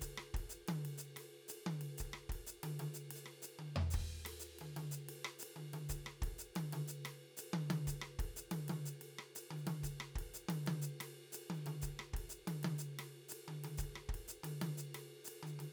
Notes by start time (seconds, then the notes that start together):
0.01 kick, hi-hat pedal, ride
0.18 cross-stick
0.34 kick, ride
0.49 hi-hat pedal
0.68 high tom, ride
0.85 ride
0.98 hi-hat pedal
1.16 cross-stick, hi-hat pedal, ride
1.48 hi-hat pedal, ride
1.66 hi-hat pedal, high tom
1.81 ride
1.98 kick, hi-hat pedal, ride
2.13 cross-stick
2.29 kick, ride
2.47 hi-hat pedal
2.63 high tom, ride
2.79 high tom, ride
2.94 hi-hat pedal
3.11 ride
3.15 hi-hat pedal
3.26 cross-stick
3.42 hi-hat pedal, ride
3.59 high tom
3.76 floor tom
3.90 kick, hi-hat pedal, crash
4.25 cross-stick, ride
4.39 hi-hat pedal
4.59 high tom, ride
4.76 high tom, ride
4.91 hi-hat pedal
5.09 hi-hat pedal, ride
5.24 cross-stick
5.39 hi-hat pedal
5.43 ride
5.56 high tom
5.73 high tom, ride
5.89 kick, hi-hat pedal, ride
6.06 cross-stick
6.22 kick, ride
6.38 hi-hat pedal
6.55 high tom, ride
6.72 high tom, ride
6.88 hi-hat pedal
7.05 cross-stick, ride
7.37 hi-hat pedal, ride
7.53 high tom
7.70 high tom, ride
7.87 kick, hi-hat pedal, ride
8.01 cross-stick
8.19 kick, ride
8.36 hi-hat pedal
8.51 high tom, ride
8.68 high tom, ride
8.85 hi-hat pedal
9.01 ride
9.18 cross-stick
9.35 hi-hat pedal, ride
9.51 high tom
9.57 hi-hat pedal
9.67 high tom, ride
9.83 kick, hi-hat pedal, ride
10.00 cross-stick
10.15 kick, ride
10.34 hi-hat pedal
10.48 high tom, ride
10.66 high tom, ride
10.82 hi-hat pedal
11.00 cross-stick, ride
11.32 hi-hat pedal, ride
11.50 high tom
11.54 hi-hat pedal
11.66 high tom, ride
11.81 kick, hi-hat pedal, ride
11.99 cross-stick
12.13 kick, ride
12.29 hi-hat pedal
12.47 high tom, ride
12.63 high tom, ride
12.78 hi-hat pedal
12.99 cross-stick, ride
13.28 hi-hat pedal, ride
13.48 high tom
13.64 high tom, ride
13.77 kick, hi-hat pedal, ride
13.95 cross-stick
14.09 kick
14.14 ride
14.28 hi-hat pedal
14.43 high tom, ride
14.61 high tom, ride
14.77 hi-hat pedal
14.94 cross-stick, ride
15.24 hi-hat pedal, ride
15.43 hi-hat pedal, high tom
15.59 high tom, ride